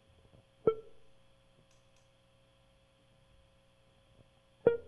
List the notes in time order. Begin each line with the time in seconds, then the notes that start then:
0.68 A4
4.67 A#4